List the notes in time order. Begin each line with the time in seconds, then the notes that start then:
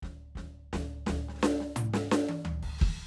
0.02 kick, snare, floor tom
0.35 kick, snare, floor tom
0.73 kick, snare, floor tom
1.06 kick, snare, floor tom
1.28 snare
1.34 snare
1.37 snare, hi-hat pedal
1.43 snare
1.60 snare
1.76 mid tom
1.94 snare
2.09 snare, hi-hat pedal
2.29 high tom
2.45 floor tom
2.62 kick, crash
2.79 kick, crash